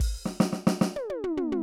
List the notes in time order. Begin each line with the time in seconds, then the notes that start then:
0.00 open hi-hat, kick
0.26 snare
0.40 snare
0.53 snare
0.67 snare
0.81 snare
0.96 high tom
1.09 high tom
1.23 floor tom
1.37 floor tom
1.51 floor tom